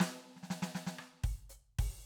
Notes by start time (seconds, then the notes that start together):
0.02 snare
0.36 snare
0.43 snare
0.50 snare
0.62 snare
0.75 snare
0.87 snare
0.99 cross-stick
1.24 open hi-hat, kick
1.50 hi-hat pedal
1.79 open hi-hat, kick